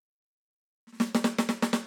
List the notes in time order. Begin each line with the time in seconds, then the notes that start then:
0.87 snare
0.93 snare
0.96 snare
1.00 snare
1.15 snare
1.24 snare
1.39 snare
1.49 snare
1.62 snare
1.73 snare